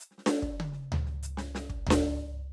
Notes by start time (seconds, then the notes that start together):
0.00 hi-hat pedal
0.11 snare
0.18 snare
0.26 snare
0.42 kick
0.60 closed hi-hat, high tom
0.72 snare
0.81 snare
0.92 floor tom
1.06 snare
1.23 hi-hat pedal
1.37 snare
1.55 snare
1.69 kick
1.87 snare, floor tom